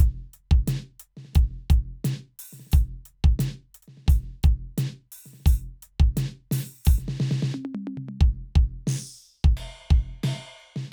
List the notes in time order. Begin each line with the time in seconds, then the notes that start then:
0.01 closed hi-hat, kick, snare
0.11 snare
0.16 snare
0.20 snare
0.35 closed hi-hat
0.53 kick
0.70 closed hi-hat, snare
1.02 closed hi-hat
1.19 snare
1.27 snare
1.35 closed hi-hat, kick, snare
1.42 snare
1.48 snare
1.53 snare
1.57 snare
1.62 snare
1.72 closed hi-hat, kick
2.07 closed hi-hat, snare
2.41 open hi-hat
2.55 snare
2.62 snare
2.69 snare
2.74 open hi-hat, kick, snare, hi-hat pedal
2.80 snare
2.85 snare
3.07 closed hi-hat
3.26 kick
3.41 closed hi-hat, snare
3.76 closed hi-hat
3.84 closed hi-hat
3.90 snare
3.99 snare
4.09 open hi-hat, kick, snare
4.14 snare, hi-hat pedal
4.22 snare
4.26 snare
4.29 snare
4.45 closed hi-hat, kick
4.80 open hi-hat, snare
5.14 open hi-hat
5.20 open hi-hat
5.28 snare
5.35 snare
5.42 snare
5.48 open hi-hat, kick, snare
5.52 snare
5.84 closed hi-hat
6.02 kick
6.19 closed hi-hat, snare
6.53 open hi-hat, snare
6.87 open hi-hat, kick
7.00 snare
7.10 snare
7.22 snare
7.33 snare, hi-hat pedal
7.44 snare
7.49 hi-hat pedal
7.56 high tom
7.67 high tom
7.77 mid tom
7.89 high tom
7.99 floor tom
8.11 mid tom
8.23 kick
8.58 kick
8.89 snare, crash
9.46 kick
9.59 ride
9.92 kick
10.25 snare, ride bell
10.61 ride
10.78 snare